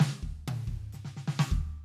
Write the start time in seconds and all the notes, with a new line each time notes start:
0.00 snare
0.23 kick
0.48 high tom
0.68 kick
0.93 snare, percussion
1.05 snare
1.17 snare
1.28 snare
1.39 snare
1.52 kick